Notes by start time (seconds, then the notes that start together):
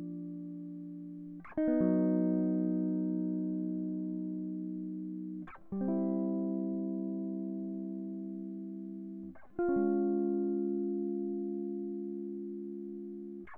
1.58 D#4
1.69 B3
1.82 F#3
5.74 G3
5.82 C4
5.89 E4
9.60 F4
9.70 C#4
9.78 G#3